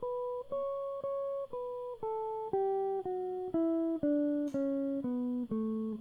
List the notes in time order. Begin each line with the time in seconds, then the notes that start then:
0.03 B4
0.52 C#5
1.52 B4
2.03 A4
2.53 G4
3.06 F#4
3.54 E4
4.03 D4
4.55 C#4
5.04 B3
5.52 A3